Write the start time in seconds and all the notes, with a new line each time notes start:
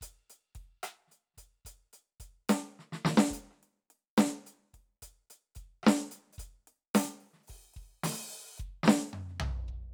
0.01 closed hi-hat, kick
0.30 closed hi-hat
0.55 kick, closed hi-hat
0.83 closed hi-hat, cross-stick
1.07 closed hi-hat, snare
1.34 closed hi-hat, kick, snare
1.65 closed hi-hat, kick
1.93 closed hi-hat
2.20 closed hi-hat, kick
2.49 closed hi-hat, snare
2.79 snare
2.92 snare
3.05 snare
3.17 snare
3.24 snare, hi-hat pedal
3.31 closed hi-hat, kick
3.51 cross-stick
3.57 snare
3.60 snare, closed hi-hat
3.90 closed hi-hat
4.17 open hi-hat, snare, hi-hat pedal
4.26 snare
4.46 closed hi-hat
4.74 kick, closed hi-hat
5.02 closed hi-hat, kick
5.30 closed hi-hat
5.55 closed hi-hat, kick
5.83 cross-stick, snare
6.11 open hi-hat
6.30 snare, hi-hat pedal
6.38 closed hi-hat, kick
6.67 closed hi-hat
6.94 open hi-hat, snare
7.04 snare
7.20 open hi-hat
7.33 snare
7.37 snare
7.41 snare, hi-hat pedal
7.47 open hi-hat, kick
7.74 kick, open hi-hat
8.03 open hi-hat, snare
8.12 snare
8.31 open hi-hat
8.58 kick, hi-hat pedal, open hi-hat
8.66 kick
8.83 snare
8.88 snare
8.96 snare
9.09 hi-hat pedal, mid tom
9.28 snare
9.33 snare
9.40 floor tom
9.68 kick